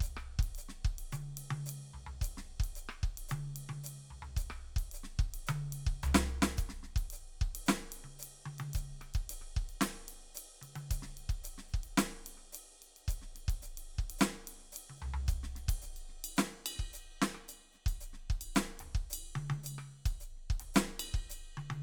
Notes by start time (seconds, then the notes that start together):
0.01 kick, hi-hat pedal, ride
0.17 cross-stick
0.39 kick, ride
0.55 hi-hat pedal, ride
0.69 snare
0.85 kick
0.99 ride
1.12 hi-hat pedal, high tom
1.37 ride
1.51 high tom
1.66 hi-hat pedal, ride
1.94 floor tom
2.07 floor tom
2.22 kick, hi-hat pedal, ride
2.37 snare
2.60 kick, ride
2.76 hi-hat pedal, ride
2.89 cross-stick
3.03 kick
3.18 ride
3.29 hi-hat pedal, high tom
3.56 ride
3.69 high tom
3.84 hi-hat pedal, ride
4.11 floor tom
4.22 floor tom
4.37 kick, hi-hat pedal, ride
4.50 cross-stick
4.76 kick, ride
4.92 hi-hat pedal, ride
5.04 snare
5.19 kick
5.34 ride
5.47 hi-hat pedal, high tom
5.73 ride
5.87 kick
6.03 floor tom, hi-hat pedal
6.15 snare
6.28 hi-hat pedal
6.42 snare
6.58 kick, hi-hat pedal, ride
6.69 snare
6.83 snare
6.96 kick, ride
7.10 hi-hat pedal, ride
7.41 kick
7.55 ride
7.66 snare, hi-hat pedal
7.92 ride
8.04 high tom
8.19 hi-hat pedal, ride
8.46 high tom
8.59 high tom, ride
8.74 kick, hi-hat pedal, ride
9.01 cross-stick, ride
9.14 kick, ride
9.30 hi-hat pedal, ride
9.42 cross-stick
9.57 kick
9.69 ride
9.81 snare, hi-hat pedal, ride
10.09 ride
10.35 hi-hat pedal, ride
10.62 high tom, ride
10.76 high tom, ride
10.91 kick, hi-hat pedal, ride
11.02 snare
11.17 ride
11.29 kick, ride
11.44 hi-hat pedal, ride
11.58 snare
11.68 hi-hat pedal
11.74 kick
11.84 ride
11.98 snare, hi-hat pedal, ride
12.26 ride
12.38 cross-stick
12.53 hi-hat pedal, ride
12.82 ride
12.97 ride
13.08 kick, hi-hat pedal, ride
13.22 snare
13.35 snare, ride
13.48 kick, ride
13.62 snare, hi-hat pedal
13.78 ride
13.94 snare
13.99 kick
14.10 ride
14.19 snare, hi-hat pedal
14.48 ride
14.60 cross-stick
14.72 hi-hat pedal
14.76 ride
14.90 high tom
14.97 hi-hat pedal
15.02 floor tom
15.14 floor tom
15.28 kick, hi-hat pedal, ride
15.43 snare
15.56 snare, ride
15.69 kick, ride
15.82 snare, hi-hat pedal
15.96 ride bell
16.09 snare
16.24 ride bell
16.37 snare, hi-hat pedal
16.66 ride bell
16.76 kick, snare
16.93 hi-hat pedal, ride bell
17.22 snare
17.35 cross-stick
17.49 hi-hat pedal, ride bell
17.60 snare
17.72 snare, hi-hat pedal
17.86 kick, ride bell
18.01 hi-hat pedal
18.13 snare
18.30 kick
18.41 ride bell
18.55 snare, hi-hat pedal
18.80 cross-stick, ride, floor tom
18.95 kick
19.10 hi-hat pedal, ride bell
19.36 high tom
19.50 high tom
19.64 hi-hat pedal, ride bell
19.79 cross-stick
20.06 kick, ride bell
20.20 hi-hat pedal
20.36 snare
20.50 kick
20.60 snare, ride, floor tom
20.74 snare, hi-hat pedal
21.00 ride bell
21.14 kick
21.30 hi-hat pedal, ride bell
21.57 high tom
21.70 high tom